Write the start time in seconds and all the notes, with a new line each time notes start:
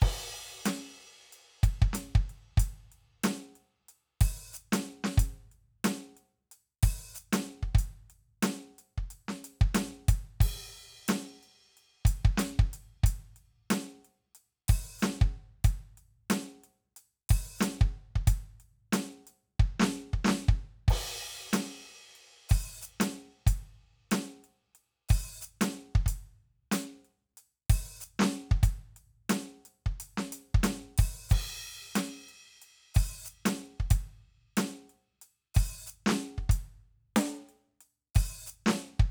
0.02 kick, crash
0.66 snare, closed hi-hat
1.33 closed hi-hat
1.64 kick, closed hi-hat
1.83 kick
1.94 snare, closed hi-hat
2.16 kick
2.30 closed hi-hat
2.58 kick, closed hi-hat
2.93 closed hi-hat
3.24 snare, closed hi-hat
3.56 closed hi-hat
3.89 closed hi-hat
4.22 kick, open hi-hat
4.54 hi-hat pedal
4.73 snare, closed hi-hat
5.05 snare
5.18 kick, closed hi-hat
5.52 closed hi-hat
5.85 snare, closed hi-hat
6.18 closed hi-hat
6.52 closed hi-hat
6.84 kick, open hi-hat
7.16 hi-hat pedal
7.34 snare, closed hi-hat
7.64 kick
7.76 kick, closed hi-hat
8.11 closed hi-hat
8.43 snare, closed hi-hat
8.79 closed hi-hat
8.99 kick
9.11 closed hi-hat
9.29 snare
9.45 closed hi-hat
9.62 kick
9.75 snare, closed hi-hat
10.09 kick, closed hi-hat
10.41 kick, crash
11.09 snare, closed hi-hat
11.44 closed hi-hat
11.78 closed hi-hat
12.06 kick, closed hi-hat
12.26 kick
12.38 snare, closed hi-hat
12.60 kick
12.74 closed hi-hat
13.04 kick, closed hi-hat
13.37 closed hi-hat
13.71 snare, closed hi-hat
14.06 closed hi-hat
14.36 closed hi-hat
14.69 kick, open hi-hat
15.00 snare, hi-hat pedal
15.04 closed hi-hat
15.22 kick
15.65 kick, closed hi-hat
15.98 closed hi-hat
16.31 snare, closed hi-hat
16.65 closed hi-hat
16.97 closed hi-hat
17.30 kick, open hi-hat
17.59 snare, hi-hat pedal
17.63 closed hi-hat
17.82 kick
18.16 kick
18.28 kick, closed hi-hat
18.61 closed hi-hat
18.93 snare, closed hi-hat
19.28 closed hi-hat
19.60 kick
19.81 snare
19.83 snare
20.14 kick
20.25 snare
20.29 snare
20.49 kick
20.89 kick, crash
21.54 snare, closed hi-hat
21.86 closed hi-hat
22.16 closed hi-hat
22.50 open hi-hat, kick
22.83 hi-hat pedal
23.01 snare, closed hi-hat
23.48 kick, closed hi-hat
24.12 snare, closed hi-hat
24.45 closed hi-hat
24.76 closed hi-hat
25.10 open hi-hat, kick
25.42 hi-hat pedal
25.62 snare, closed hi-hat
25.96 kick
26.07 kick, closed hi-hat
26.72 closed hi-hat, snare
27.06 closed hi-hat
27.38 closed hi-hat
27.71 kick, open hi-hat
28.01 hi-hat pedal
28.20 snare
28.23 snare
28.52 kick
28.64 kick, closed hi-hat
28.97 closed hi-hat
29.30 snare, closed hi-hat
29.66 closed hi-hat
29.87 kick
30.01 closed hi-hat
30.18 snare
30.33 closed hi-hat
30.55 kick
30.64 snare, closed hi-hat
30.99 kick, open hi-hat
31.30 kick, hi-hat pedal, crash
31.64 closed hi-hat
31.96 snare, closed hi-hat
32.29 closed hi-hat
32.63 closed hi-hat
32.95 open hi-hat, kick
33.26 hi-hat pedal
33.46 snare, closed hi-hat
33.81 kick
33.91 kick, closed hi-hat
34.58 snare, closed hi-hat
34.90 closed hi-hat
35.22 closed hi-hat
35.55 open hi-hat, kick
35.87 hi-hat pedal
36.07 snare
36.10 snare
36.39 kick
36.50 kick, closed hi-hat
37.17 snare, closed hi-hat
37.50 closed hi-hat
37.82 closed hi-hat
38.16 open hi-hat, kick
38.47 hi-hat pedal
38.67 snare
38.69 snare
39.00 kick